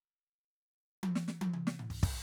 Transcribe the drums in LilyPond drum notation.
\new DrumStaff \drummode { \time 4/4 \tempo 4 = 118 r4 r4 tommh16 sn16 sn16 tommh16 toml16 sn16 tomfh16 <bd cymc>16 | <bd cymc>4 r4 r4 r4 | }